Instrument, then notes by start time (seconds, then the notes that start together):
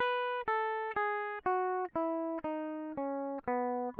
electric guitar
0.01 B4
0.48 A4
0.97 G#4
1.47 F#4
1.96 E4
2.45 D#4
2.98 C#4
3.48 B3